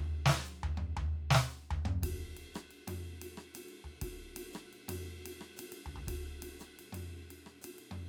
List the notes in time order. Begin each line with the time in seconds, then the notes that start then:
0.26 snare
0.30 snare
0.45 hi-hat pedal
0.63 floor tom
0.78 mid tom
0.97 floor tom
1.31 snare
1.35 snare
1.49 hi-hat pedal
1.71 floor tom
1.85 mid tom
2.03 kick, ride
2.37 ride
2.54 cross-stick, hi-hat pedal
2.71 ride
2.88 mid tom, ride
3.22 ride
3.38 cross-stick
3.54 hi-hat pedal, ride
3.69 ride
3.84 floor tom
4.02 kick, ride
4.36 ride
4.53 cross-stick, hi-hat pedal
4.73 ride
4.89 mid tom, ride
5.26 ride
5.41 cross-stick
5.57 hi-hat pedal, ride
5.72 ride
5.86 floor tom
5.96 floor tom
6.08 kick, ride
6.42 ride
6.60 cross-stick, hi-hat pedal
6.79 ride
6.93 mid tom, ride
7.31 ride
7.46 cross-stick
7.62 hi-hat pedal, ride
7.78 ride
7.91 mid tom